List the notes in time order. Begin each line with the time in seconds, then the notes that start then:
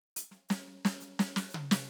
0.16 closed hi-hat
0.31 snare
0.49 snare, hi-hat pedal
0.67 snare
0.85 snare
1.00 snare, hi-hat pedal
1.19 snare
1.36 snare
1.50 hi-hat pedal
1.54 high tom
1.71 snare